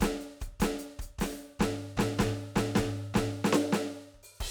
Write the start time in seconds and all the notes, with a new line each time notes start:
0.01 open hi-hat, kick, snare, hi-hat pedal
0.21 open hi-hat, hi-hat pedal
0.41 open hi-hat, kick, hi-hat pedal
0.60 closed hi-hat, kick, snare
0.78 closed hi-hat, hi-hat pedal
0.99 closed hi-hat, kick, hi-hat pedal
1.19 open hi-hat, kick, snare
1.59 kick, snare, mid tom
1.97 kick, snare, mid tom
2.19 kick, snare, mid tom
2.56 kick, snare, mid tom
2.75 kick, snare, mid tom
3.14 kick, snare, mid tom
3.44 snare
3.53 snare
3.73 snare
4.14 kick
4.23 open hi-hat
4.38 kick
4.40 kick, crash